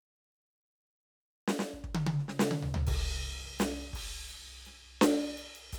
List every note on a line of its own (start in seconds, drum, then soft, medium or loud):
1.48 snare loud
1.59 snare medium
1.73 kick soft
1.84 kick soft
1.95 high tom loud
2.06 high tom loud
2.18 snare soft
2.39 snare loud
2.51 high tom loud
2.62 floor tom medium
2.74 floor tom loud
2.87 kick medium
2.87 ride loud
3.59 snare loud
3.59 hi-hat pedal medium
3.93 kick soft
3.93 crash medium
4.28 hi-hat pedal soft
4.65 snare soft
4.65 ride soft
5.01 snare loud
5.01 hi-hat pedal medium
5.01 ride loud
5.37 ride soft
5.55 ride soft
5.72 kick soft
5.72 hi-hat pedal medium
5.72 ride medium